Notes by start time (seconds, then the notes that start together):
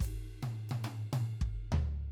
0.01 kick, hi-hat pedal
0.05 ride
0.43 high tom, ride bell
0.69 high tom, ride bell
0.84 high tom, ride bell
1.13 high tom, ride bell
1.41 kick
1.72 floor tom